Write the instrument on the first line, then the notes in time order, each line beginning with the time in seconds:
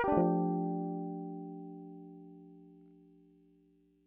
electric guitar
0.00 A#4
0.04 D4 G4
0.18 F3